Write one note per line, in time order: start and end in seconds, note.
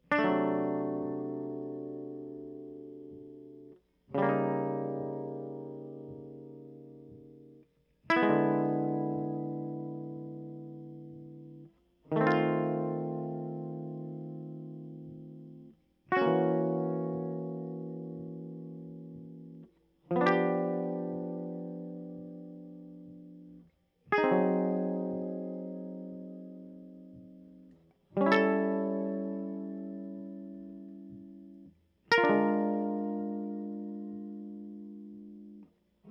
0.12 3.76 D4
0.20 3.78 A3
0.25 3.81 F#3
0.30 3.78 C3
4.16 7.68 C#3
4.16 7.67 G3
4.23 7.65 A#3
4.30 7.67 D#4
8.11 11.75 E4
8.17 11.67 B3
8.23 11.76 G#3
8.31 11.70 D3
12.13 15.79 D#3
12.13 15.77 A3
12.22 15.74 C4
12.28 15.74 F4
16.13 19.73 F#4
16.17 19.67 C#4
16.23 19.70 A#3
16.28 19.68 E3
20.12 23.66 F3
20.17 23.68 B3
20.22 23.63 D4
20.27 23.08 G4
24.13 26.77 G#4
24.19 27.74 D#4
24.25 27.77 C4
24.33 27.77 F#3
28.18 31.74 G3
28.18 31.73 C#4
28.27 31.69 E4
28.33 30.90 A4
31.69 31.99 E2
32.12 35.43 A#4
32.19 35.65 F4
32.24 35.69 D4
32.31 35.68 G#3